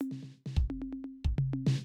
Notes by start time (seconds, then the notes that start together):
0.00 hi-hat pedal, high tom
0.11 snare
0.23 snare
0.46 snare
0.56 kick
0.70 high tom
0.82 high tom
0.93 high tom
1.04 high tom
1.24 kick
1.38 floor tom
1.53 high tom
1.67 snare